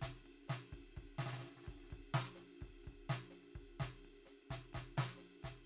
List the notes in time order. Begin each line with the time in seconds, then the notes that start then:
0.01 kick, snare, hi-hat pedal, ride
0.08 kick
0.26 ride
0.48 snare, hi-hat pedal, ride
0.72 kick, ride
0.77 kick
0.94 kick, hi-hat pedal, ride
1.02 kick
1.18 snare, ride
1.26 snare
1.32 snare
1.39 snare, hi-hat pedal
1.43 snare, ride
1.50 snare
1.56 snare
1.63 snare, ride
1.68 kick, snare
1.73 kick
1.77 snare
1.83 snare
1.86 snare
1.87 snare, hi-hat pedal, ride
1.92 kick
1.97 kick
2.14 snare, ride
2.35 hi-hat pedal, ride
2.39 snare
2.61 kick, ride
2.67 kick
2.84 kick, ride
2.92 kick
3.09 snare, ride
3.30 hi-hat pedal, ride
3.41 snare
3.55 kick, ride
3.60 kick
3.80 kick, snare, ride
3.87 kick
4.05 ride
4.25 hi-hat pedal, ride
4.50 kick, snare, ride
4.73 kick, snare, ride
4.81 kick
4.97 snare, ride
5.17 hi-hat pedal, ride
5.43 kick, snare, ride